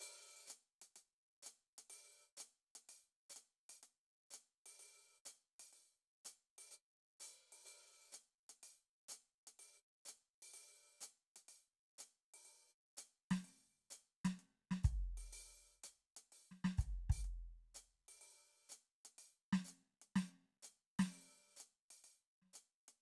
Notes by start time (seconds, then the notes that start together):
0.00 open hi-hat
0.48 closed hi-hat, hi-hat pedal
0.82 open hi-hat
0.96 open hi-hat
1.43 closed hi-hat, hi-hat pedal
1.78 closed hi-hat
1.90 open hi-hat
2.37 closed hi-hat, hi-hat pedal
2.75 open hi-hat
2.89 open hi-hat
3.30 hi-hat pedal
3.36 closed hi-hat
3.70 open hi-hat
3.83 open hi-hat
4.31 closed hi-hat, hi-hat pedal
4.66 open hi-hat
4.79 open hi-hat
5.25 closed hi-hat, hi-hat pedal
5.60 open hi-hat
5.73 open hi-hat
6.25 closed hi-hat, hi-hat pedal
6.58 open hi-hat
6.71 open hi-hat
7.20 open hi-hat, hi-hat pedal
7.52 open hi-hat
7.65 open hi-hat
8.12 closed hi-hat, hi-hat pedal
8.50 closed hi-hat
8.63 open hi-hat
9.09 closed hi-hat, hi-hat pedal
9.47 closed hi-hat
9.59 open hi-hat
10.05 closed hi-hat, hi-hat pedal
10.42 open hi-hat
10.54 open hi-hat
11.01 closed hi-hat, hi-hat pedal
11.36 open hi-hat
11.48 open hi-hat
11.98 closed hi-hat, hi-hat pedal
12.34 open hi-hat
12.45 open hi-hat
12.97 closed hi-hat, hi-hat pedal
13.31 snare, open hi-hat
13.45 open hi-hat
13.91 closed hi-hat, hi-hat pedal
14.25 snare, open hi-hat
14.39 open hi-hat
14.71 snare
14.84 kick, closed hi-hat, hi-hat pedal
15.17 open hi-hat
15.33 open hi-hat
15.84 hi-hat pedal, open hi-hat
16.17 closed hi-hat
16.32 open hi-hat
16.51 snare
16.64 snare
16.78 kick, closed hi-hat, hi-hat pedal
17.10 kick, open hi-hat
17.25 open hi-hat
17.75 closed hi-hat, hi-hat pedal
18.08 open hi-hat
18.21 open hi-hat
18.69 closed hi-hat, hi-hat pedal
19.05 closed hi-hat
19.18 open hi-hat
19.53 snare
19.65 closed hi-hat, hi-hat pedal
20.02 closed hi-hat
20.16 snare, open hi-hat
20.63 closed hi-hat, hi-hat pedal
20.99 snare, open hi-hat
21.12 open hi-hat
21.57 closed hi-hat, hi-hat pedal
21.91 open hi-hat
22.04 open hi-hat
22.42 snare
22.45 snare
22.53 closed hi-hat, hi-hat pedal
22.88 closed hi-hat